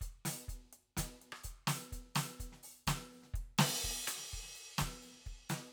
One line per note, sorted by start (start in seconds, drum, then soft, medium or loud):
0.01 closed hi-hat soft
0.01 kick soft
0.25 open hi-hat loud
0.25 snare medium
0.48 closed hi-hat soft
0.48 kick soft
0.60 snare soft
0.63 snare soft
0.73 open hi-hat soft
0.97 closed hi-hat loud
0.97 kick soft
0.97 snare medium
1.22 open hi-hat soft
1.32 cross-stick medium
1.44 closed hi-hat medium
1.44 kick soft
1.67 open hi-hat medium
1.67 snare loud
1.92 closed hi-hat soft
1.92 kick soft
2.15 open hi-hat medium
2.15 snare loud
2.40 closed hi-hat soft
2.40 kick soft
2.52 snare soft
2.56 snare soft
2.59 open hi-hat medium
2.59 snare soft
2.87 closed hi-hat medium
2.87 kick soft
2.87 snare loud
3.01 snare soft
3.12 open hi-hat soft
3.23 snare soft
3.31 kick soft
3.31 snare soft
3.36 closed hi-hat soft
3.58 snare loud
3.58 crash loud
3.84 kick soft
4.07 open hi-hat loud
4.07 cross-stick medium
4.17 snare soft
4.31 kick soft
4.31 open hi-hat soft
4.43 snare soft
4.46 snare soft
4.51 snare soft
4.55 open hi-hat soft
4.78 open hi-hat medium
4.78 kick soft
4.78 snare medium
5.02 open hi-hat soft
5.11 snare soft
5.15 snare soft
5.18 snare soft
5.26 closed hi-hat soft
5.26 kick soft
5.50 open hi-hat medium
5.50 snare medium